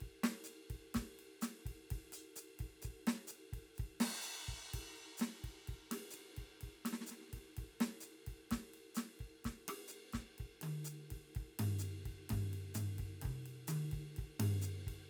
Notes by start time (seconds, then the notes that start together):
0.01 kick, ride
0.07 kick
0.24 snare, ride
0.44 hi-hat pedal, ride
0.50 snare
0.70 kick, ride
0.76 kick
0.95 kick, snare, ride
1.01 kick
1.19 ride
1.42 snare, hi-hat pedal, ride
1.59 snare
1.66 kick, ride
1.71 kick
1.77 snare
1.91 kick, ride
2.13 closed hi-hat, ride
2.36 hi-hat pedal, ride
2.59 kick, ride
2.66 kick
2.82 kick, hi-hat pedal, ride
2.90 kick
3.07 snare, ride
3.28 hi-hat pedal, ride
3.53 kick, ride
3.58 kick
3.76 hi-hat pedal, ride
3.80 kick
4.01 snare, crash
4.22 hi-hat pedal
4.49 kick
4.54 kick
4.71 kick, hi-hat pedal, ride
4.79 kick
4.96 ride
5.18 snare, hi-hat pedal, ride
5.44 kick, ride
5.68 kick, ride
5.74 kick
5.91 snare, ride
6.11 hi-hat pedal, ride
6.37 kick, ride
6.61 kick, ride
6.69 kick
6.85 snare, ride
6.93 snare
7.01 snare
7.07 hi-hat pedal, ride
7.11 snare
7.21 snare
7.29 snare
7.33 kick, snare, ride
7.42 snare
7.47 snare
7.52 snare
7.55 kick, snare, ride
7.63 kick
7.81 snare, ride
8.01 hi-hat pedal, ride
8.27 kick, ride
8.51 kick, snare, ride
8.57 kick
8.74 ride
8.95 snare, hi-hat pedal, ride
9.20 kick, ride
9.45 kick, snare, ride
9.51 kick
9.69 cross-stick, ride
9.88 hi-hat pedal, ride
10.13 kick, snare, ride
10.20 kick
10.38 kick, ride
10.45 kick
10.62 high tom, ride
10.85 hi-hat pedal, ride
11.11 kick, ride
11.17 kick
11.35 kick, ride
11.42 kick
11.59 floor tom, ride
11.79 hi-hat pedal, ride
12.06 kick, ride
12.11 kick
12.30 kick, floor tom, ride
12.38 kick
12.54 ride
12.75 floor tom, hi-hat pedal, ride
12.99 kick, ride
13.05 kick
13.22 kick, mid tom, ride
13.31 kick
13.46 ride
13.68 hi-hat pedal, high tom, ride
13.92 kick, ride
13.98 kick
14.17 kick, ride
14.24 kick
14.40 floor tom, ride
14.62 hi-hat pedal, ride
14.85 kick, snare, ride
14.93 kick